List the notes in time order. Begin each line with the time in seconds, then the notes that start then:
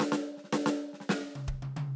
0.00 snare
0.12 snare
0.37 snare
0.44 snare
0.52 snare
0.66 snare
0.93 snare
1.00 snare
1.09 snare
1.35 high tom
1.48 kick
1.62 high tom
1.76 high tom